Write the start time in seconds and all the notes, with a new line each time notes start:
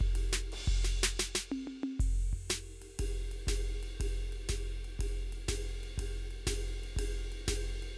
0.01 kick
0.16 ride
0.33 snare
0.52 ride
0.68 kick
0.85 snare
1.03 snare
1.20 snare
1.35 snare
1.52 high tom
1.68 high tom
1.84 high tom
2.00 kick, crash
2.33 kick
2.50 snare, ride
2.82 ride
2.99 kick, ride
3.32 ride
3.48 kick, snare, ride
3.83 ride
4.00 kick, ride
4.33 ride
4.49 kick, snare, ride
4.85 ride
5.00 kick, ride
5.33 ride
5.49 kick, snare, ride
5.84 ride
5.98 kick, ride
6.31 ride
6.47 kick, snare, ride
6.84 ride
6.97 kick, ride
7.32 ride
7.48 kick, snare, ride
7.83 ride